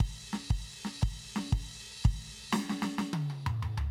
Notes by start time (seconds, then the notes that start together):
0.01 kick, crash
0.33 snare
0.50 kick, crash
0.85 snare
1.01 kick, crash
1.36 snare
1.52 kick, crash
2.04 kick, crash
2.53 snare
2.69 snare
2.82 snare
2.98 snare
3.13 high tom
3.30 high tom
3.46 mid tom
3.62 mid tom
3.77 floor tom